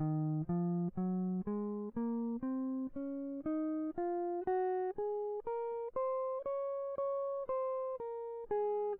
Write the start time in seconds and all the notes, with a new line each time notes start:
0.02 D#3
0.50 F3
0.99 F#3
1.48 G#3
1.97 A#3
2.44 C4
2.97 C#4
3.47 D#4
3.98 F4
4.48 F#4
4.99 G#4
5.47 A#4
5.97 C5
6.46 C#5
6.99 C#5
7.49 C5
8.00 A#4
8.51 G#4